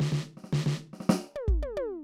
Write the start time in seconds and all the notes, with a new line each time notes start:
0.00 snare
0.12 snare
0.37 snare
0.44 snare
0.53 snare
0.66 snare
0.93 snare
1.00 snare
1.09 snare
1.35 high tom
1.48 kick
1.62 high tom
1.76 high tom